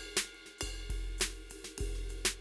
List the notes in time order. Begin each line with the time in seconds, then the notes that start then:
0.01 ride
0.17 snare
0.24 snare, hi-hat pedal
0.35 ride
0.46 snare
0.58 hi-hat pedal, ride bell
0.63 kick
0.74 snare
0.80 snare
0.85 snare
0.90 kick, ride
1.18 snare, hi-hat pedal, ride
1.29 snare
1.50 hi-hat pedal, ride
1.64 snare
1.78 kick, hi-hat pedal, ride
1.86 kick
1.90 kick
1.95 snare
2.09 hi-hat pedal, ride
2.25 snare